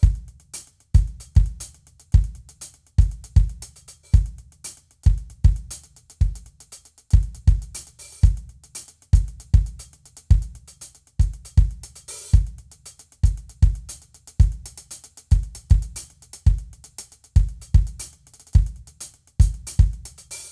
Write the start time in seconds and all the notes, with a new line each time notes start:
0.01 kick, hi-hat pedal
0.05 closed hi-hat
0.16 closed hi-hat
0.29 closed hi-hat
0.40 closed hi-hat
0.54 closed hi-hat
0.68 closed hi-hat
0.81 closed hi-hat
0.95 closed hi-hat, kick
1.08 closed hi-hat
1.21 closed hi-hat
1.36 kick, closed hi-hat
1.46 closed hi-hat
1.61 closed hi-hat
1.75 closed hi-hat
1.88 closed hi-hat
2.00 closed hi-hat
2.13 kick, closed hi-hat
2.25 closed hi-hat
2.36 closed hi-hat
2.49 closed hi-hat
2.62 closed hi-hat
2.75 closed hi-hat
2.87 closed hi-hat
2.99 kick, closed hi-hat
3.12 closed hi-hat
3.25 closed hi-hat
3.37 kick, closed hi-hat
3.50 closed hi-hat
3.63 closed hi-hat
3.76 closed hi-hat
3.89 open hi-hat
4.04 open hi-hat
4.13 kick, closed hi-hat, hi-hat pedal
4.26 closed hi-hat
4.39 closed hi-hat
4.53 closed hi-hat
4.65 closed hi-hat
4.78 closed hi-hat
4.91 closed hi-hat
5.04 kick, closed hi-hat
5.18 closed hi-hat
5.31 closed hi-hat
5.45 kick, closed hi-hat
5.57 closed hi-hat
5.71 closed hi-hat
5.84 closed hi-hat
5.97 closed hi-hat
6.10 closed hi-hat
6.22 kick, closed hi-hat
6.36 closed hi-hat
6.47 closed hi-hat
6.61 closed hi-hat
6.73 closed hi-hat
6.86 closed hi-hat
6.99 closed hi-hat
7.11 kick, closed hi-hat
7.24 closed hi-hat
7.35 closed hi-hat
7.48 kick, closed hi-hat
7.63 closed hi-hat
7.75 closed hi-hat
7.88 closed hi-hat
8.00 open hi-hat
8.13 open hi-hat
8.22 kick, closed hi-hat, hi-hat pedal
8.38 closed hi-hat
8.50 closed hi-hat
8.64 closed hi-hat
8.76 closed hi-hat
8.89 closed hi-hat
9.03 closed hi-hat
9.14 kick, closed hi-hat
9.29 closed hi-hat
9.41 closed hi-hat
9.54 kick, closed hi-hat
9.67 closed hi-hat
9.80 closed hi-hat
9.94 closed hi-hat
10.06 closed hi-hat
10.17 closed hi-hat
10.31 kick, closed hi-hat
10.43 closed hi-hat
10.56 closed hi-hat
10.68 closed hi-hat
10.82 closed hi-hat
10.95 closed hi-hat
11.08 closed hi-hat
11.20 kick, closed hi-hat
11.34 closed hi-hat
11.46 closed hi-hat
11.58 kick, closed hi-hat
11.71 closed hi-hat
11.84 closed hi-hat
11.96 closed hi-hat
12.09 open hi-hat
12.24 open hi-hat
12.32 kick, closed hi-hat, hi-hat pedal
12.47 closed hi-hat
12.59 closed hi-hat
12.72 closed hi-hat
12.86 closed hi-hat
13.00 closed hi-hat
13.13 closed hi-hat
13.24 kick, closed hi-hat
13.38 closed hi-hat
13.50 closed hi-hat
13.63 kick, closed hi-hat
13.76 closed hi-hat
13.90 closed hi-hat
14.02 closed hi-hat
14.15 closed hi-hat
14.28 closed hi-hat
14.40 kick, closed hi-hat
14.53 closed hi-hat
14.66 closed hi-hat
14.78 closed hi-hat
14.91 closed hi-hat
15.04 closed hi-hat
15.18 closed hi-hat
15.32 kick, closed hi-hat
15.44 closed hi-hat
15.56 closed hi-hat
15.71 kick, closed hi-hat
15.83 closed hi-hat
15.97 closed hi-hat
16.11 closed hi-hat
16.23 closed hi-hat
16.34 closed hi-hat
16.47 kick, closed hi-hat
16.59 closed hi-hat
16.74 closed hi-hat
16.85 closed hi-hat
16.99 closed hi-hat
17.13 closed hi-hat
17.25 closed hi-hat
17.37 kick, closed hi-hat
17.49 closed hi-hat
17.62 closed hi-hat
17.75 kick, closed hi-hat
17.88 closed hi-hat
18.00 closed hi-hat
18.14 closed hi-hat
18.27 closed hi-hat
18.34 closed hi-hat
18.40 closed hi-hat
18.47 closed hi-hat
18.54 kick, closed hi-hat
18.67 closed hi-hat
18.77 closed hi-hat
18.88 closed hi-hat
19.01 closed hi-hat
19.15 closed hi-hat
19.28 closed hi-hat
19.40 closed hi-hat, kick
19.55 closed hi-hat
19.68 closed hi-hat
19.80 kick, closed hi-hat
19.94 closed hi-hat
20.06 closed hi-hat
20.18 closed hi-hat
20.32 open hi-hat
20.45 open hi-hat